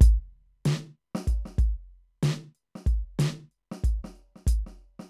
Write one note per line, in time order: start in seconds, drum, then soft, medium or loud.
0.01 closed hi-hat loud
0.01 kick loud
0.65 closed hi-hat medium
0.65 snare loud
1.15 snare medium
1.27 closed hi-hat medium
1.27 kick medium
1.46 snare soft
1.59 closed hi-hat medium
1.59 kick medium
2.23 closed hi-hat medium
2.23 snare loud
2.55 closed hi-hat soft
2.76 snare soft
2.87 closed hi-hat soft
2.87 kick medium
3.19 closed hi-hat loud
3.19 snare loud
3.51 closed hi-hat soft
3.72 snare medium
3.84 closed hi-hat medium
3.84 kick medium
4.05 snare soft
4.16 closed hi-hat soft
4.36 snare soft
4.47 closed hi-hat loud
4.47 kick medium
4.67 snare soft
5.00 snare soft